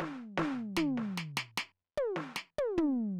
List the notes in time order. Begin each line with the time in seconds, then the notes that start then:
0.00 snare, floor tom
0.38 snare, floor tom
0.76 snare, floor tom
0.97 snare
1.17 snare
1.37 snare
1.57 snare
1.97 high tom
2.16 snare
2.36 snare
2.58 high tom
2.77 floor tom